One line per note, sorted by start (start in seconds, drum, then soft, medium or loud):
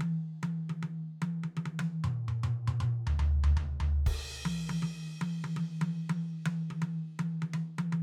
0.01 high tom loud
0.43 high tom loud
0.70 high tom loud
0.83 high tom loud
1.22 high tom loud
1.44 high tom medium
1.57 high tom loud
1.66 high tom loud
1.79 high tom loud
2.04 mid tom loud
2.29 mid tom loud
2.44 mid tom loud
2.68 mid tom loud
2.81 mid tom loud
3.07 floor tom loud
3.19 floor tom loud
3.44 floor tom loud
3.57 floor tom loud
3.80 floor tom loud
4.07 kick medium
4.07 ride loud
4.46 high tom loud
4.70 high tom loud
4.83 high tom loud
5.21 high tom loud
5.44 high tom loud
5.57 high tom loud
5.82 high tom loud
6.10 high tom loud
6.46 high tom loud
6.71 high tom medium
6.82 high tom loud
7.19 high tom loud
7.42 high tom loud
7.54 high tom loud
7.79 high tom loud
7.93 high tom loud